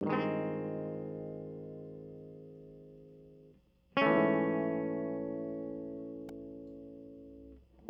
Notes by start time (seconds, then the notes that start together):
0.00 G2
0.07 D#3 G#3
0.13 C4
3.97 C#4
4.02 A3
4.07 E3
4.18 G#2